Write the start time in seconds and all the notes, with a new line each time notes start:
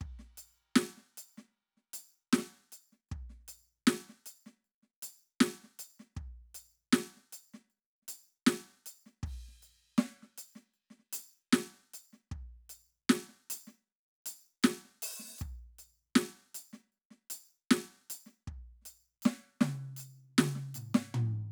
0.01 kick, percussion
0.20 snare
0.39 percussion
0.77 snare
0.98 snare
1.19 percussion
1.39 snare
1.78 snare
1.95 percussion
2.34 snare
2.39 snare
2.73 percussion
2.93 snare
3.10 kick, percussion
3.31 snare
3.41 snare
3.49 percussion
3.88 snare
4.10 snare
4.27 percussion
4.47 snare
4.66 percussion
4.84 snare
5.04 percussion
5.42 snare
5.65 snare
5.80 percussion
6.01 snare
6.16 kick, percussion
6.56 percussion
6.94 snare
7.18 snare
7.34 percussion
7.55 snare
7.71 percussion
8.03 snare
8.09 percussion
8.48 snare
8.87 percussion
9.07 snare
9.24 kick, crash
9.49 snare
9.64 percussion
9.99 snare
10.24 snare
10.39 percussion
10.57 snare
10.75 percussion
10.92 snare
11.00 snare
11.14 percussion
11.54 snare
11.74 snare
11.95 percussion
12.14 snare
12.33 kick
12.71 percussion
13.11 snare
13.30 snare
13.51 percussion
13.68 snare
14.27 percussion
14.64 snare, percussion
14.86 snare
14.96 snare
15.04 percussion
15.21 snare
15.25 snare
15.28 snare
15.33 snare
15.40 kick, percussion
15.44 snare
15.80 percussion
16.17 snare
16.56 percussion
16.74 snare
16.93 percussion
17.12 snare
17.31 percussion
17.72 snare
17.90 snare
18.11 percussion
18.27 snare
18.49 kick
18.83 snare, percussion
19.23 snare, percussion
19.62 snare, mid tom
19.98 percussion
20.01 percussion
20.39 snare, mid tom
20.57 snare
20.76 floor tom, percussion
20.96 snare
21.15 floor tom